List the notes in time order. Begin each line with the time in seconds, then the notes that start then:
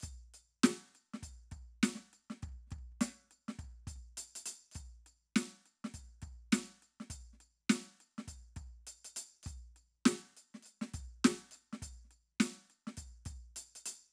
0.01 percussion
0.04 kick, percussion
0.35 percussion
0.64 snare, percussion
0.96 percussion
1.14 snare
1.23 kick, percussion
1.52 kick, percussion
1.84 snare, percussion
1.96 snare
2.14 percussion
2.31 snare
2.43 kick, percussion
2.49 kick
2.52 kick
2.68 snare, percussion
2.73 kick
2.79 kick
2.93 kick
3.02 snare, percussion
3.32 percussion
3.49 snare
3.60 kick, percussion
3.65 kick
3.88 kick, percussion
3.97 kick
4.18 percussion
4.36 percussion
4.47 percussion
4.72 percussion
4.76 kick, percussion
5.07 percussion
5.37 snare, percussion
5.67 percussion
5.85 snare
5.95 kick, percussion
6.23 kick, percussion
6.53 snare, percussion
6.83 percussion
7.01 snare
7.11 kick, percussion
7.34 snare
7.41 percussion
7.70 snare, percussion
8.01 percussion
8.19 snare
8.28 kick, percussion
8.57 kick, percussion
8.88 percussion
9.05 percussion
9.17 percussion
9.44 kick, percussion
9.48 percussion
9.77 percussion
10.06 snare, percussion
10.37 percussion
10.55 snare
10.63 percussion
10.67 percussion
10.82 snare
10.94 kick, percussion
11.00 kick
11.04 kick
11.25 snare, percussion
11.52 percussion
11.56 percussion
11.74 snare
11.83 kick, percussion
12.05 snare
12.12 percussion
12.41 snare, percussion
12.65 percussion
12.71 percussion
12.88 snare
12.98 kick, percussion
13.26 kick, percussion
13.32 kick
13.57 percussion
13.76 percussion
13.87 percussion